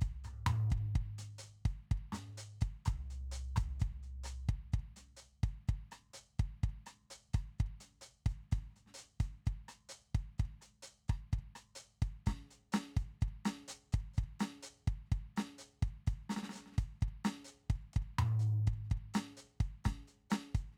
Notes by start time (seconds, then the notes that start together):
0.01 closed hi-hat, kick
0.24 closed hi-hat, mid tom
0.47 hi-hat pedal, mid tom, open hi-hat
0.71 kick, closed hi-hat
0.78 kick
0.83 snare
0.96 kick, closed hi-hat
1.18 closed hi-hat, snare
1.39 hi-hat pedal
1.43 closed hi-hat
1.65 closed hi-hat, kick
1.91 closed hi-hat, kick
1.97 kick
2.12 closed hi-hat, snare, mid tom
2.38 closed hi-hat, hi-hat pedal
2.61 closed hi-hat, kick
2.86 closed hi-hat, kick, floor tom
3.10 closed hi-hat
3.32 closed hi-hat, hi-hat pedal
3.56 closed hi-hat, kick, floor tom
3.64 kick
3.80 closed hi-hat, kick
3.89 snare
4.03 closed hi-hat
4.24 closed hi-hat, cross-stick, hi-hat pedal
4.49 closed hi-hat, kick
4.73 closed hi-hat, kick
4.79 kick
4.96 closed hi-hat, snare
5.17 hi-hat pedal
5.21 closed hi-hat
5.43 closed hi-hat, kick
5.68 closed hi-hat, kick
5.92 closed hi-hat, cross-stick, snare
6.14 closed hi-hat, hi-hat pedal
6.39 closed hi-hat, kick
6.63 closed hi-hat, kick
6.69 kick
6.86 closed hi-hat, cross-stick, snare
7.10 hi-hat pedal
7.34 closed hi-hat, kick, cross-stick, snare
7.59 closed hi-hat, kick
7.66 kick
7.80 closed hi-hat, snare
8.01 hi-hat pedal
8.06 closed hi-hat
8.26 closed hi-hat, kick
8.31 kick
8.52 closed hi-hat, kick, snare
8.58 kick
8.70 snare, mid tom
8.76 closed hi-hat, snare
8.86 snare
8.94 closed hi-hat, hi-hat pedal
9.20 closed hi-hat, kick, snare
9.46 closed hi-hat, kick
9.68 closed hi-hat, cross-stick, snare
9.89 closed hi-hat, hi-hat pedal
10.15 closed hi-hat, kick
10.38 closed hi-hat, kick, snare
10.45 kick
10.61 closed hi-hat, cross-stick
10.83 closed hi-hat, hi-hat pedal
11.08 closed hi-hat, kick, cross-stick
11.32 closed hi-hat, kick
11.39 kick
11.56 closed hi-hat, cross-stick
11.75 hi-hat pedal
11.80 closed hi-hat
12.02 closed hi-hat, kick
12.26 closed hi-hat, kick, snare
12.32 kick
12.51 closed hi-hat
12.72 closed hi-hat, snare, hi-hat pedal
12.97 closed hi-hat, kick
13.02 kick
13.21 closed hi-hat, kick
13.28 kick
13.45 closed hi-hat, snare
13.68 closed hi-hat, hi-hat pedal
13.93 closed hi-hat, kick
14.00 kick
14.14 closed hi-hat, hi-hat pedal
14.18 kick
14.24 kick
14.40 closed hi-hat, snare
14.63 closed hi-hat, hi-hat pedal
14.88 closed hi-hat, kick
15.05 snare
15.12 closed hi-hat, kick
15.37 closed hi-hat, snare
15.58 closed hi-hat, hi-hat pedal
15.83 closed hi-hat, kick
15.88 kick
16.07 closed hi-hat, kick
16.13 kick
16.30 closed hi-hat, snare
16.37 snare
16.43 snare
16.50 snare, hi-hat pedal
16.56 closed hi-hat, snare
16.60 snare
16.66 snare
16.72 snare
16.78 closed hi-hat, kick, snare
16.84 kick, snare
16.88 snare
16.95 snare
17.01 kick, open hi-hat
17.08 kick
17.25 closed hi-hat, snare
17.45 closed hi-hat, hi-hat pedal
17.70 kick, closed hi-hat
17.75 kick
17.94 kick, closed hi-hat
18.02 kick
18.19 closed hi-hat, mid tom
18.39 closed hi-hat, hi-hat pedal
18.67 kick, closed hi-hat
18.73 kick
18.84 snare
18.90 kick, closed hi-hat
18.97 kick
19.14 closed hi-hat, snare
19.37 hi-hat pedal
19.44 snare
19.60 closed hi-hat, kick
19.85 open hi-hat, kick, snare
19.92 kick
20.08 closed hi-hat
20.30 open hi-hat, snare, hi-hat pedal
20.55 closed hi-hat, kick
20.72 snare